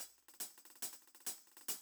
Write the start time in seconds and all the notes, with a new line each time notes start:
0.00 percussion
0.10 percussion
0.18 percussion
0.23 percussion
0.28 percussion
0.34 percussion
0.40 percussion
0.51 percussion
0.58 percussion
0.65 percussion
0.70 percussion
0.76 percussion
0.82 percussion
0.93 percussion
1.02 percussion
1.07 percussion
1.15 percussion
1.20 percussion
1.25 percussion
1.38 percussion
1.47 percussion
1.52 percussion
1.57 percussion
1.61 percussion
1.68 percussion